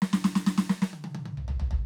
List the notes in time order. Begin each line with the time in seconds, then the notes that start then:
0.03 snare
0.14 snare
0.25 snare
0.36 snare
0.47 snare
0.58 snare
0.70 snare
0.83 snare
0.94 high tom
1.05 high tom
1.15 high tom
1.26 high tom
1.38 floor tom
1.49 floor tom
1.60 floor tom
1.71 floor tom